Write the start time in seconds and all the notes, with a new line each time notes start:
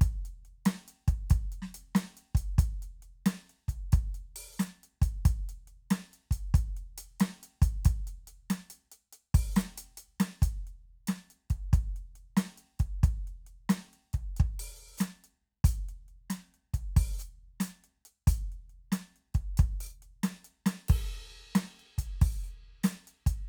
0.01 kick, closed hi-hat
0.25 closed hi-hat
0.45 closed hi-hat
0.65 snare, closed hi-hat
0.88 closed hi-hat
1.08 kick, closed hi-hat
1.30 kick, closed hi-hat
1.52 closed hi-hat
1.62 snare
1.74 closed hi-hat
1.95 snare, closed hi-hat
2.17 closed hi-hat
2.35 kick, closed hi-hat
2.58 kick, closed hi-hat
2.82 closed hi-hat
3.02 closed hi-hat
3.26 snare, closed hi-hat
3.49 closed hi-hat
3.68 kick, closed hi-hat
3.92 kick, closed hi-hat
4.14 closed hi-hat
4.36 open hi-hat
4.59 snare, hi-hat pedal, open hi-hat
4.83 closed hi-hat
5.01 kick, closed hi-hat
5.25 kick, closed hi-hat
5.49 closed hi-hat
5.67 closed hi-hat
5.90 snare, closed hi-hat
6.13 closed hi-hat
6.31 kick, closed hi-hat
6.54 kick, closed hi-hat
6.76 closed hi-hat
6.98 closed hi-hat
7.20 snare, closed hi-hat
7.43 closed hi-hat
7.62 kick, closed hi-hat
7.85 kick, closed hi-hat
8.07 closed hi-hat
8.27 closed hi-hat
8.50 snare, closed hi-hat
8.70 closed hi-hat
8.92 closed hi-hat
9.13 closed hi-hat
9.34 kick, open hi-hat
9.56 snare, hi-hat pedal, open hi-hat
9.78 closed hi-hat
9.97 closed hi-hat
10.20 snare, closed hi-hat
10.42 kick, closed hi-hat
10.67 closed hi-hat
11.07 snare, closed hi-hat
11.30 closed hi-hat
11.50 kick, closed hi-hat
11.73 kick, closed hi-hat
11.96 closed hi-hat
12.15 closed hi-hat
12.37 snare, closed hi-hat
12.57 closed hi-hat
12.79 kick, closed hi-hat
13.03 kick, closed hi-hat
13.27 closed hi-hat
13.46 closed hi-hat
13.69 snare, closed hi-hat
13.93 closed hi-hat
14.13 kick, closed hi-hat
14.36 kick, closed hi-hat
14.59 open hi-hat
14.98 snare, closed hi-hat, hi-hat pedal
15.24 closed hi-hat
15.64 closed hi-hat, kick
15.89 closed hi-hat
16.08 closed hi-hat
16.30 snare, closed hi-hat
16.54 closed hi-hat
16.74 kick, closed hi-hat
16.96 kick, open hi-hat
17.19 hi-hat pedal
17.60 closed hi-hat, snare
17.84 closed hi-hat
18.05 closed hi-hat
18.27 closed hi-hat, kick
18.52 closed hi-hat
18.69 closed hi-hat
18.92 snare, closed hi-hat
19.16 closed hi-hat
19.34 kick, closed hi-hat
19.57 kick, closed hi-hat
19.80 open hi-hat
19.85 hi-hat pedal
20.02 closed hi-hat
20.23 snare, closed hi-hat
20.44 closed hi-hat
20.66 snare, closed hi-hat
20.88 kick, crash
21.55 snare, closed hi-hat
21.79 closed hi-hat
21.98 kick, closed hi-hat
22.21 kick, open hi-hat
22.44 hi-hat pedal, open hi-hat
22.83 closed hi-hat, snare
23.07 closed hi-hat
23.26 kick, closed hi-hat